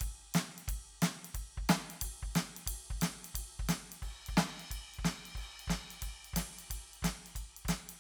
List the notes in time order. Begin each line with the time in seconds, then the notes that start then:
0.01 kick, ride
0.34 snare, hi-hat pedal, ride
0.58 ride
0.68 kick, ride
1.02 snare, hi-hat pedal, ride
1.25 ride
1.34 kick, hi-hat pedal, ride
1.58 kick
1.69 snare, ride
1.90 ride
2.02 kick, ride
2.23 kick
2.36 snare, ride
2.57 ride
2.67 kick, ride
2.90 kick
3.02 snare, ride
3.25 ride
3.35 kick, ride
3.59 kick
3.69 snare, ride
3.92 ride
4.02 kick, ride
4.27 kick, ride
4.37 snare, ride
4.60 ride
4.71 kick, ride
4.94 ride
4.99 kick
5.05 snare, ride
5.26 ride
5.35 kick, ride
5.60 ride
5.68 kick, snare, ride
5.91 ride
6.02 kick, ride
6.25 ride
6.33 kick, snare, ride
6.59 ride
6.70 kick, ride
6.94 ride
7.03 kick, snare, ride
7.26 ride
7.35 kick, ride bell
7.57 ride
7.65 kick, snare, ride bell
7.89 ride